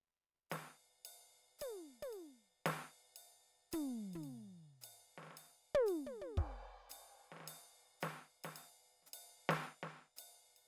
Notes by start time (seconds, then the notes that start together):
0.50 snare, hi-hat pedal, ride
1.05 ride
1.58 hi-hat pedal, high tom, ride
2.02 high tom, ride
2.12 ride
2.66 snare, hi-hat pedal, ride
3.16 ride
3.71 floor tom, hi-hat pedal, ride
4.13 floor tom, ride
4.81 hi-hat pedal, ride
5.18 snare
5.23 snare
5.27 snare
5.31 snare
5.37 ride
5.74 high tom
5.86 hi-hat pedal, ride
6.06 high tom
6.21 high tom
6.37 kick, crash
6.89 hi-hat pedal, ride
7.32 snare
7.36 snare
7.40 snare
7.43 snare
7.46 snare, ride
7.52 snare
8.00 snare, hi-hat pedal, ride
8.44 snare, ride
8.56 ride
9.02 snare, hi-hat pedal
9.13 ride
9.49 snare, ride
9.64 ride
9.83 snare
10.16 hi-hat pedal, ride
10.56 ride